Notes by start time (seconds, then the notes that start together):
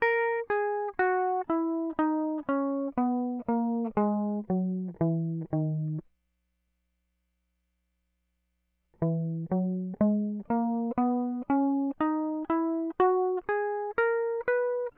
0.02 A#4
0.50 G#4
0.99 F#4
1.50 E4
1.99 D#4
2.49 C#4
2.98 B3
3.49 A#3
3.98 G#3
4.51 F#3
5.02 E3
5.54 D#3
9.03 E3
9.52 F#3
10.02 G#3
10.51 A#3
10.98 B3
11.50 C#4
12.01 D#4
12.50 E4
13.00 F#4
13.49 G#4
13.98 A#4
14.48 B4